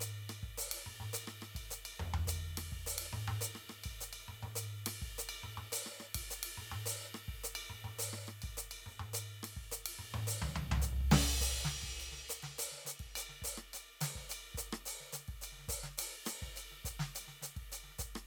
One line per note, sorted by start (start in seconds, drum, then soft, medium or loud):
0.01 hi-hat pedal loud
0.01 ride bell medium
0.30 cross-stick medium
0.30 ride bell medium
0.43 kick soft
0.58 hi-hat pedal loud
0.72 ride loud
0.87 high tom medium
1.00 high tom medium
1.14 hi-hat pedal loud
1.14 ride bell medium
1.28 cross-stick medium
1.42 cross-stick soft
1.42 ride bell soft
1.55 kick medium
1.55 ride bell medium
1.71 hi-hat pedal loud
1.86 ride bell medium
2.00 mid tom medium
2.14 mid tom loud
2.27 kick soft
2.27 hi-hat pedal loud
2.27 ride bell loud
2.58 cross-stick medium
2.58 ride loud
2.73 kick medium
2.87 hi-hat pedal loud
2.99 ride loud
3.13 high tom medium
3.28 high tom medium
3.41 hi-hat pedal loud
3.41 ride bell medium
3.55 cross-stick soft
3.70 cross-stick soft
3.70 ride bell soft
3.84 kick medium
3.84 ride bell medium
4.01 hi-hat pedal loud
4.13 ride bell medium
4.29 high tom medium
4.43 open hi-hat soft
4.43 high tom medium
4.43 ride bell soft
4.56 hi-hat pedal loud
4.56 ride bell medium
4.87 cross-stick medium
4.87 hi-hat pedal soft
4.87 ride loud
5.02 kick medium
5.19 hi-hat pedal loud
5.29 ride bell loud
5.44 high tom medium
5.58 high tom medium
5.72 hi-hat pedal loud
5.72 ride bell loud
5.86 cross-stick soft
6.00 cross-stick soft
6.00 ride soft
6.15 kick medium
6.15 ride loud
6.31 hi-hat pedal loud
6.43 ride loud
6.58 high tom medium
6.72 high tom medium
6.72 ride soft
6.86 hi-hat pedal loud
6.86 ride bell medium
7.15 cross-stick medium
7.29 kick medium
7.44 hi-hat pedal loud
7.56 ride bell loud
7.70 high tom medium
7.85 high tom medium
7.99 hi-hat pedal loud
7.99 ride bell medium
8.13 cross-stick soft
8.28 cross-stick soft
8.28 ride soft
8.42 kick medium
8.42 ride bell medium
8.58 hi-hat pedal loud
8.72 ride bell medium
8.87 hi-hat pedal soft
8.87 high tom medium
9.00 high tom medium
9.14 hi-hat pedal loud
9.14 ride bell medium
9.43 cross-stick medium
9.43 ride medium
9.57 kick soft
9.72 hi-hat pedal loud
9.86 ride loud
9.99 high tom medium
10.14 high tom medium
10.28 hi-hat pedal loud
10.42 floor tom loud
10.56 floor tom loud
10.72 floor tom loud
10.82 hi-hat pedal loud
11.01 kick soft
11.12 snare loud
11.12 crash loud
11.41 kick soft
11.41 hi-hat pedal loud
11.41 ride medium
11.65 snare medium
11.65 hi-hat pedal soft
11.81 kick soft
11.81 snare soft
12.00 hi-hat pedal soft
12.00 ride bell medium
12.12 snare soft
12.29 hi-hat pedal loud
12.29 ride soft
12.43 snare soft
12.43 ride soft
12.59 hi-hat pedal loud
12.59 ride bell medium
12.72 snare soft
12.85 snare soft
12.85 hi-hat pedal loud
12.85 ride soft
13.00 kick soft
13.00 ride soft
13.16 hi-hat pedal loud
13.16 ride bell loud
13.29 snare soft
13.42 kick soft
13.42 hi-hat pedal loud
13.42 ride soft
13.58 cross-stick soft
13.58 ride soft
13.74 hi-hat pedal medium
13.74 ride bell medium
14.01 snare medium
14.01 hi-hat pedal loud
14.01 ride loud
14.16 kick soft
14.16 snare soft
14.30 hi-hat pedal medium
14.30 ride bell loud
14.55 kick soft
14.55 hi-hat pedal loud
14.61 ride soft
14.73 cross-stick medium
14.86 hi-hat pedal medium
14.86 ride bell medium
15.01 snare soft
15.13 snare soft
15.13 hi-hat pedal loud
15.13 ride soft
15.28 kick medium
15.28 ride soft
15.42 hi-hat pedal medium
15.42 ride bell medium
15.52 snare soft
15.57 snare soft
15.60 snare soft
15.62 snare soft
15.69 kick medium
15.69 hi-hat pedal loud
15.69 ride soft
15.84 snare soft
15.84 ride soft
15.98 hi-hat pedal medium
15.98 ride loud
16.26 cross-stick medium
16.26 hi-hat pedal medium
16.26 ride medium
16.42 kick soft
16.42 snare soft
16.56 hi-hat pedal medium
16.56 ride bell medium
16.72 snare soft
16.85 kick medium
16.85 hi-hat pedal loud
16.85 ride soft
17.00 snare medium
17.00 ride soft
17.15 hi-hat pedal medium
17.15 ride bell medium
17.28 snare soft
17.42 snare soft
17.42 hi-hat pedal loud
17.42 ride soft
17.57 kick soft
17.57 ride soft
17.72 hi-hat pedal medium
17.72 ride bell medium
17.84 snare soft
17.88 snare soft
17.91 snare soft
17.99 kick medium
17.99 hi-hat pedal loud
17.99 ride soft
18.16 cross-stick medium
18.16 ride soft